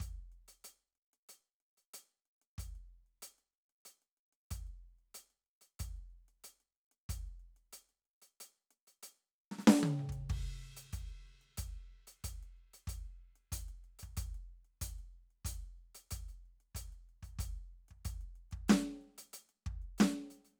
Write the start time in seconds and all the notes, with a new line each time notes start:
0.00 closed hi-hat, kick
0.32 closed hi-hat
0.48 closed hi-hat
0.64 closed hi-hat
0.81 closed hi-hat
0.95 closed hi-hat
1.13 closed hi-hat
1.29 closed hi-hat
1.60 closed hi-hat
1.77 closed hi-hat
1.94 closed hi-hat
2.09 closed hi-hat
2.25 closed hi-hat
2.42 closed hi-hat
2.58 closed hi-hat, kick
2.75 closed hi-hat
3.06 closed hi-hat
3.22 closed hi-hat
3.38 closed hi-hat
3.53 closed hi-hat
3.69 closed hi-hat
3.85 closed hi-hat
4.02 closed hi-hat
4.17 closed hi-hat
4.33 closed hi-hat
4.51 closed hi-hat, kick
4.67 closed hi-hat
4.99 closed hi-hat
5.14 closed hi-hat
5.30 closed hi-hat
5.46 closed hi-hat
5.61 closed hi-hat
5.79 closed hi-hat, kick
5.96 closed hi-hat
6.10 closed hi-hat
6.28 closed hi-hat
6.44 closed hi-hat
6.60 closed hi-hat
6.76 closed hi-hat
6.91 closed hi-hat
7.09 closed hi-hat, kick
7.27 closed hi-hat
7.40 closed hi-hat
7.56 closed hi-hat
7.73 closed hi-hat
7.89 closed hi-hat
8.05 closed hi-hat
8.22 closed hi-hat
8.40 closed hi-hat
8.71 closed hi-hat
8.87 closed hi-hat
9.03 closed hi-hat
9.16 closed hi-hat
9.51 snare
9.58 snare, hi-hat pedal
9.67 snare
9.83 high tom
9.99 mid tom
10.09 kick, closed hi-hat
10.29 kick, crash
10.45 closed hi-hat
10.56 closed hi-hat
10.76 closed hi-hat
10.93 closed hi-hat, kick
11.09 closed hi-hat
11.27 closed hi-hat
11.41 closed hi-hat
11.57 closed hi-hat, kick
11.74 closed hi-hat
12.07 closed hi-hat
12.24 closed hi-hat, kick
12.43 closed hi-hat
12.57 closed hi-hat
12.73 closed hi-hat
12.87 closed hi-hat, kick
13.05 closed hi-hat
13.35 closed hi-hat
13.52 closed hi-hat, kick
13.68 closed hi-hat
13.84 closed hi-hat
13.99 closed hi-hat, kick
14.17 closed hi-hat, kick
14.34 closed hi-hat
14.65 closed hi-hat
14.81 closed hi-hat, kick
14.98 closed hi-hat
15.30 closed hi-hat
15.45 closed hi-hat, kick
15.62 closed hi-hat
15.95 closed hi-hat
16.11 closed hi-hat, kick
16.28 closed hi-hat
16.45 closed hi-hat
16.60 closed hi-hat
16.75 closed hi-hat, kick
16.92 closed hi-hat
17.09 closed hi-hat
17.22 closed hi-hat, kick
17.39 closed hi-hat, kick
17.56 closed hi-hat
17.88 kick, closed hi-hat
18.05 closed hi-hat, kick
18.21 closed hi-hat
18.35 closed hi-hat
18.51 kick, closed hi-hat
18.68 closed hi-hat, snare
19.01 closed hi-hat
19.18 closed hi-hat
19.33 closed hi-hat
19.49 closed hi-hat
19.66 kick, closed hi-hat
19.82 closed hi-hat
19.98 closed hi-hat, snare
20.30 closed hi-hat
20.45 closed hi-hat